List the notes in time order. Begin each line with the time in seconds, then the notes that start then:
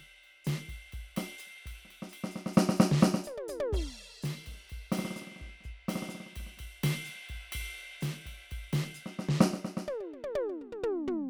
0.01 ride
0.24 ride
0.45 snare, hi-hat pedal, ride
0.69 kick, ride
0.74 kick
0.92 kick, hi-hat pedal, ride
0.99 kick
1.17 snare, ride
1.39 hi-hat pedal, ride
1.48 snare
1.67 kick, ride
1.71 kick
1.86 snare
1.91 ride
2.03 snare
2.10 hi-hat pedal, ride
2.25 snare
2.32 hi-hat pedal
2.37 snare
2.47 snare
2.54 hi-hat pedal
2.58 snare
2.70 snare
2.77 hi-hat pedal
2.81 snare
2.92 snare
3.00 snare, hi-hat pedal
3.15 snare
3.25 hi-hat pedal, high tom
3.38 high tom
3.49 kick, hi-hat pedal, high tom
3.61 high tom
3.73 kick, hi-hat pedal, high tom, crash
3.80 kick
4.23 snare, hi-hat pedal, ride
4.47 kick, snare, ride
4.53 kick, snare
4.58 snare
4.61 snare
4.70 kick, hi-hat pedal, ride
4.78 kick
4.93 snare, ride
4.98 snare, ride
5.06 snare
5.12 snare
5.17 snare, hi-hat pedal
5.23 snare
5.28 snare
5.33 snare
5.37 snare
5.41 kick, snare
5.44 snare
5.47 snare
5.50 snare
5.62 snare, hi-hat pedal
5.66 kick
5.71 kick
5.89 snare, ride
5.96 snare
6.03 snare
6.10 snare, hi-hat pedal
6.16 snare
6.21 snare
6.27 snare
6.34 kick, snare, ride
6.41 kick, snare
6.47 snare
6.58 kick, snare, hi-hat pedal, ride
6.66 kick
6.84 snare, ride
7.06 hi-hat pedal, ride
7.10 snare
7.16 snare
7.30 kick, ride
7.36 kick
7.53 kick, hi-hat pedal, ride bell
7.61 kick
7.79 ride
8.02 snare, hi-hat pedal, ride
8.27 kick, snare, ride
8.34 snare
8.50 kick, hi-hat pedal, ride
8.74 snare, ride
8.84 snare
8.95 hi-hat pedal
9.07 snare
9.20 snare
9.30 snare
9.41 snare
9.54 snare
9.65 snare
9.78 snare
9.88 high tom
10.01 high tom
10.14 high tom
10.24 high tom
10.36 high tom
10.50 high tom
10.62 mid tom
10.73 mid tom
10.84 mid tom
11.08 floor tom